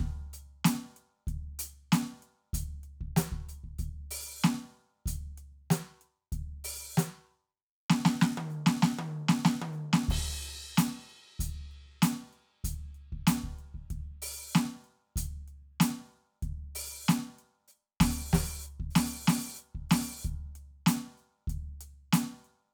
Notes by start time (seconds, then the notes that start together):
0.01 kick
0.34 closed hi-hat
0.65 closed hi-hat, snare
0.97 closed hi-hat
1.28 kick, closed hi-hat
1.60 open hi-hat
1.93 closed hi-hat, snare, hi-hat pedal
2.23 closed hi-hat
2.54 closed hi-hat, kick
2.84 closed hi-hat
3.02 kick
3.17 closed hi-hat, snare
3.33 kick
3.49 closed hi-hat
3.65 kick
3.79 closed hi-hat, kick
4.11 open hi-hat
4.45 open hi-hat, snare, hi-hat pedal
5.07 closed hi-hat, kick
5.38 closed hi-hat
5.71 closed hi-hat, snare
6.02 closed hi-hat
6.33 kick, closed hi-hat
6.65 open hi-hat
6.98 closed hi-hat, snare, hi-hat pedal
7.91 snare
8.06 snare
8.20 snare, hi-hat pedal
8.38 high tom
8.51 hi-hat pedal
8.67 snare
8.82 snare, hi-hat pedal
8.99 high tom
9.29 snare
9.44 snare, hi-hat pedal
9.63 high tom
9.73 hi-hat pedal
9.94 snare
10.09 kick, crash
10.78 closed hi-hat, snare
11.10 closed hi-hat
11.40 closed hi-hat, kick
11.72 closed hi-hat
12.03 closed hi-hat, snare
12.34 closed hi-hat
12.65 closed hi-hat, kick
12.95 closed hi-hat
13.13 kick
13.28 closed hi-hat, snare
13.44 kick
13.59 closed hi-hat
13.75 kick
13.91 kick, closed hi-hat
14.23 open hi-hat
14.56 open hi-hat, snare, hi-hat pedal
14.85 closed hi-hat
15.17 closed hi-hat, kick
15.48 closed hi-hat
15.81 closed hi-hat, snare
16.43 kick, closed hi-hat
16.76 open hi-hat
17.09 open hi-hat, snare, hi-hat pedal
17.39 closed hi-hat
17.69 hi-hat pedal
18.01 open hi-hat, kick, snare
18.34 open hi-hat, kick, snare
18.64 hi-hat pedal
18.81 kick
18.91 hi-hat pedal
18.96 open hi-hat, snare
19.28 open hi-hat, snare
19.57 hi-hat pedal
19.76 kick
19.90 open hi-hat, snare, hi-hat pedal
20.25 kick, hi-hat pedal
20.56 closed hi-hat
20.87 closed hi-hat, snare
21.18 closed hi-hat
21.48 kick, closed hi-hat
21.81 closed hi-hat
22.13 closed hi-hat, snare
22.45 closed hi-hat